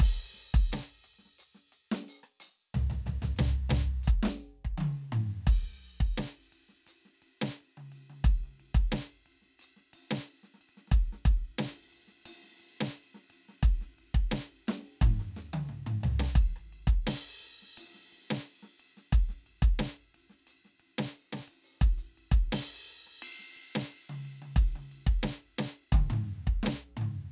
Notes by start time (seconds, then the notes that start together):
0.01 kick, percussion, crash
0.34 snare, percussion
0.55 kick
0.66 hi-hat pedal
0.73 closed hi-hat, snare
1.05 closed hi-hat
1.14 closed hi-hat
1.19 snare
1.26 snare
1.39 hi-hat pedal, percussion
1.55 snare
1.73 closed hi-hat
1.92 snare
2.09 percussion
2.17 hi-hat pedal
2.24 cross-stick
2.41 closed hi-hat
2.75 snare, floor tom
2.90 snare, floor tom
3.07 snare, floor tom
3.23 snare, floor tom
3.37 snare, floor tom, hi-hat pedal
3.70 snare, floor tom, hi-hat pedal
3.78 kick
4.04 hi-hat pedal
4.08 kick
4.23 kick, snare
4.26 snare
4.65 kick
4.75 kick, high tom
4.81 high tom
5.13 mid tom
5.48 kick, crash
5.84 ride bell
6.01 kick
6.18 snare, ride
6.53 ride
6.69 snare
6.87 hi-hat pedal, ride
7.06 snare
7.23 ride
7.42 snare
7.48 hi-hat pedal
7.61 ride
7.78 high tom
7.93 ride
8.10 high tom
8.25 kick, ride bell
8.44 high tom
8.60 ride
8.75 kick
8.93 snare, ride bell
9.27 ride
9.42 snare
9.60 hi-hat pedal, ride bell
9.77 snare
9.94 ride
10.12 snare
10.18 hi-hat pedal
10.28 ride bell
10.44 snare
10.55 snare
10.62 ride bell
10.70 ride
10.78 snare
10.88 snare
10.92 kick, ride
10.99 hi-hat pedal
11.13 snare
11.26 kick, ride
11.59 snare, hi-hat pedal, ride
11.88 hi-hat pedal
11.93 ride bell
12.08 snare
12.26 hi-hat pedal, ride
12.44 snare
12.52 snare
12.60 ride
12.81 snare, hi-hat pedal
12.99 ride
13.15 snare
13.31 ride
13.49 snare
13.63 kick, ride
13.82 snare
13.99 ride
14.15 kick
14.32 snare, ride
14.68 snare, ride
15.02 kick, mid tom
15.20 snare
15.37 snare
15.54 high tom
15.70 mid tom
15.87 mid tom
16.04 floor tom
16.20 snare
16.36 kick, ride bell
16.57 cross-stick
16.73 ride bell
16.88 kick
17.08 snare, crash
17.41 ride
17.63 snare
17.78 hi-hat pedal, ride
17.95 snare
18.13 ride
18.31 snare
18.36 hi-hat pedal
18.60 snare, hi-hat pedal
18.80 ride bell
18.98 snare
19.13 kick, ride bell
19.30 snare
19.47 ride bell
19.63 kick
19.80 snare, ride bell
20.15 ride
20.30 snare
20.48 hi-hat pedal, ride bell
20.65 snare
20.80 ride
20.99 snare
21.04 hi-hat pedal
21.17 ride bell
21.33 snare
21.48 ride
21.64 percussion
21.82 kick, ride
21.99 closed hi-hat
22.18 ride bell
22.32 kick
22.53 snare, crash
22.87 ride bell
23.07 cross-stick
23.23 ride bell
23.40 snare
23.57 ride
23.76 snare
23.94 ride
24.10 high tom
24.26 ride bell
24.42 high tom
24.57 kick, ride
24.76 high tom
24.92 ride bell
25.07 kick
25.24 snare, ride bell
25.59 snare, ride bell
25.93 kick, mid tom, high tom
26.11 mid tom, high tom
26.48 kick
26.64 snare
26.67 snare
26.97 mid tom
27.02 high tom